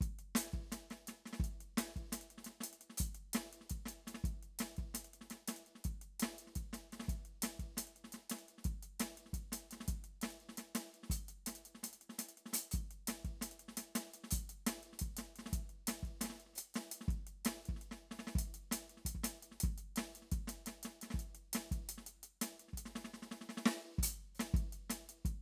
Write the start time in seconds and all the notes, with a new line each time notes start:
0.01 kick, closed hi-hat
0.19 closed hi-hat
0.35 closed hi-hat, snare
0.53 kick, closed hi-hat
0.72 snare, closed hi-hat
0.91 snare, closed hi-hat
1.08 snare, closed hi-hat
1.26 snare, closed hi-hat
1.33 snare
1.40 kick
1.44 closed hi-hat
1.61 closed hi-hat
1.78 snare, closed hi-hat
1.96 kick, closed hi-hat
2.12 snare, closed hi-hat
2.21 closed hi-hat
2.31 closed hi-hat
2.38 snare
2.45 snare, closed hi-hat
2.61 snare, closed hi-hat
2.73 closed hi-hat
2.81 closed hi-hat
2.90 snare
2.98 closed hi-hat, kick
3.15 closed hi-hat
3.34 snare, closed hi-hat
3.53 closed hi-hat
3.61 snare
3.70 kick, closed hi-hat
3.86 snare, closed hi-hat
4.07 snare, closed hi-hat
4.15 snare
4.24 kick, closed hi-hat
4.43 closed hi-hat
4.59 snare, closed hi-hat
4.77 kick, closed hi-hat
4.94 snare, closed hi-hat
5.05 closed hi-hat
5.14 closed hi-hat
5.21 snare
5.30 snare, closed hi-hat
5.48 snare, closed hi-hat
5.57 closed hi-hat
5.67 closed hi-hat
5.76 snare
5.84 kick, closed hi-hat
6.02 closed hi-hat
6.20 snare, closed hi-hat
6.39 closed hi-hat
6.47 snare
6.56 kick, closed hi-hat
6.73 snare, closed hi-hat
6.93 snare, closed hi-hat
7.00 snare
7.03 snare
7.09 kick, closed hi-hat
7.25 closed hi-hat
7.42 snare, closed hi-hat
7.60 kick, closed hi-hat
7.77 snare, closed hi-hat
7.87 closed hi-hat
7.96 closed hi-hat
8.04 snare
8.13 snare, closed hi-hat
8.30 snare, closed hi-hat
8.39 closed hi-hat
8.49 closed hi-hat
8.58 snare
8.65 kick, closed hi-hat
8.83 closed hi-hat
9.00 snare, closed hi-hat
9.18 closed hi-hat
9.26 snare
9.34 kick, closed hi-hat
9.52 snare, closed hi-hat
9.71 snare, closed hi-hat
9.81 snare
9.88 kick, closed hi-hat
10.04 closed hi-hat
10.22 snare, closed hi-hat
10.31 closed hi-hat
10.41 closed hi-hat
10.49 snare
10.58 snare, closed hi-hat
10.75 snare, closed hi-hat
10.94 closed hi-hat
11.03 snare
11.10 closed hi-hat, kick
11.29 closed hi-hat
11.47 snare, closed hi-hat
11.56 closed hi-hat
11.65 closed hi-hat
11.75 snare
11.83 snare, closed hi-hat
11.93 closed hi-hat
12.01 closed hi-hat
12.10 snare
12.19 snare, closed hi-hat
12.29 closed hi-hat
12.38 closed hi-hat
12.46 snare
12.53 closed hi-hat, snare
12.72 closed hi-hat, kick
12.91 closed hi-hat
13.08 snare, closed hi-hat
13.25 kick, closed hi-hat
13.42 snare, closed hi-hat
13.52 closed hi-hat
13.60 closed hi-hat
13.69 snare
13.77 snare, closed hi-hat
13.96 snare, closed hi-hat
14.14 closed hi-hat
14.24 snare
14.31 closed hi-hat, kick
14.50 closed hi-hat
14.67 snare, closed hi-hat
14.83 closed hi-hat
14.93 snare
14.99 kick, closed hi-hat
15.17 snare, closed hi-hat
15.36 snare, closed hi-hat
15.46 snare
15.50 kick, snare, closed hi-hat
15.70 closed hi-hat
15.87 snare, closed hi-hat
16.03 kick, closed hi-hat
16.21 snare, closed hi-hat
16.24 snare
16.30 snare
16.35 snare
16.40 open hi-hat
16.46 snare
16.54 snare, hi-hat pedal
16.58 closed hi-hat
16.74 snare, closed hi-hat
16.92 closed hi-hat
17.01 snare
17.08 kick, closed hi-hat
17.27 closed hi-hat
17.45 snare, closed hi-hat
17.66 kick, closed hi-hat
17.76 snare
17.82 closed hi-hat
17.91 snare
18.11 snare
18.19 snare
18.27 snare
18.36 kick, closed hi-hat
18.54 closed hi-hat
18.72 snare, closed hi-hat
18.90 closed hi-hat
18.97 snare
19.05 kick, closed hi-hat
19.15 kick
19.24 snare, closed hi-hat
19.43 closed hi-hat
19.52 snare
19.60 kick, closed hi-hat
19.78 closed hi-hat
19.96 snare, closed hi-hat
20.15 closed hi-hat
20.22 snare
20.32 kick, closed hi-hat
20.48 snare, closed hi-hat
20.66 snare, closed hi-hat
20.83 snare, closed hi-hat
21.02 snare, closed hi-hat
21.11 kick, snare
21.19 closed hi-hat
21.35 closed hi-hat
21.53 snare, closed hi-hat
21.72 kick, closed hi-hat
21.89 closed hi-hat
21.98 snare
22.07 closed hi-hat
22.23 closed hi-hat
22.42 snare, closed hi-hat
22.60 closed hi-hat
22.68 snare
22.74 kick
22.78 closed hi-hat
22.86 snare
22.96 snare
23.05 snare
23.14 snare
23.23 snare
23.31 snare
23.41 snare
23.49 snare
23.57 snare
23.66 snare
23.99 kick
24.03 open hi-hat
24.35 hi-hat pedal
24.40 snare, closed hi-hat
24.54 kick, closed hi-hat
24.73 closed hi-hat
24.90 snare, closed hi-hat
25.09 closed hi-hat
25.25 kick, closed hi-hat